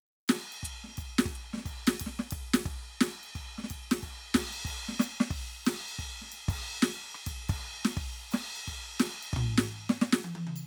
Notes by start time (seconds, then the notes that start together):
0.28 snare, percussion, ride
0.53 ride
0.63 kick, floor tom
0.84 snare
0.88 snare
0.92 snare
0.98 kick, ride, percussion
1.19 snare, ride
1.26 kick, ride
1.35 floor tom
1.54 snare
1.58 snare
1.61 snare
1.66 kick, percussion, ride
1.87 snare, ride
2.00 kick, ride
2.07 snare
2.19 snare
2.31 kick, ride, percussion
2.54 snare, ride
2.66 kick, ride
3.01 snare, percussion, ride
3.24 ride
3.36 kick, ride
3.58 snare
3.64 snare
3.69 kick, ride, percussion
3.92 snare, ride
4.03 kick, ride
4.35 kick, snare, percussion, ride
4.51 snare, ride
4.65 kick, ride
4.89 snare
4.93 snare
5.00 snare, percussion
5.21 snare
5.31 kick, crash
5.66 snare, percussion, ride
5.89 ride
5.99 kick, ride
6.22 snare
6.26 snare
6.32 snare, ride, percussion
6.49 kick, ride
6.83 snare
6.94 ride
7.15 cross-stick
7.27 kick, ride
7.49 kick, ride
7.85 snare
7.96 kick, snare, crash
8.31 snare, percussion, ride
8.56 ride
8.68 kick, ride
9.00 snare, percussion, ride
9.23 ride
9.33 kick, floor tom
9.58 snare
9.90 snare
10.02 snare
10.13 snare
10.25 high tom
10.36 high tom
10.47 mid tom
10.56 percussion